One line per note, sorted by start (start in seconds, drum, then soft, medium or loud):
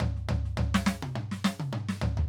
0.00 floor tom loud
0.16 snare soft
0.29 floor tom loud
0.45 snare soft
0.57 floor tom loud
0.74 snare loud
0.86 snare loud
1.02 high tom loud
1.15 mid tom loud
1.31 snare medium
1.44 snare loud
1.59 high tom loud
1.73 mid tom loud
1.88 snare loud
2.01 floor tom loud
2.17 floor tom loud